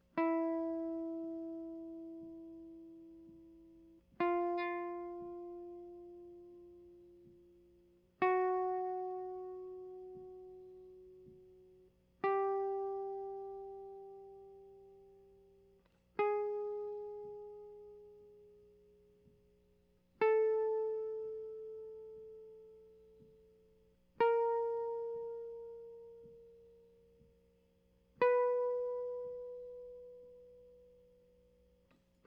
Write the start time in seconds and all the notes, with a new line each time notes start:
0.18 E4
4.21 F4
8.23 F#4
12.24 G4
16.20 G#4
20.22 A4
24.21 A#4
28.22 B4